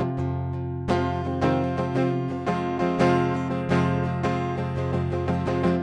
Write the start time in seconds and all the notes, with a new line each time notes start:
0.00 C3 F3 C4 F4
0.19 F2 C3 F3
0.55 F2 C3
0.90 F2 C3 F3 G#3 C4 F4
1.25 F2 D#3 G#3 C4 F4
1.43 F2 C3 D#3 G#3 C4 F4
1.66 F3
1.79 C3 F3 G#3 C4 F4
1.97 C3 F3 G#3 C4 F4
2.30 F2 C3 F3 G#3 C4 F4
2.48 C3 F3 G#3 C4 F4
2.67 C3
2.81 C3 F3 G#3 C4 F4
3.00 F2 C3 F3 G#3 C4 F4
3.35 C3 G#3 C4 F4
3.41 F3
3.50 F3 G#3 C4 F4
3.54 C3
3.71 F2 C3 F3 G#3 C4 F4
4.05 F2 C3 F3 G#3 C4 F4
4.25 F3 G#3 C4 F4
4.57 F3 G#3 C4 F4
4.61 F2 C3
4.77 F2 C3 F3 G#3 C4 F4
4.93 F3 G#3 C4 F4
4.97 F2 C3
5.12 C3 F3 G#3 C4 F4
5.28 F2 C3 F3 G#3 C4 F4
5.47 F2 C3 F3 G#3 C4 F4
5.64 F2 C3 F3 G#3 C4 F4